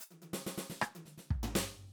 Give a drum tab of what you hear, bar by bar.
Hi-hat    |p---------------|
Snare     |---oooor-gg--o--|
High tom  |-go-----o-------|
Floor tom |------------o---|
Kick      |-----------o----|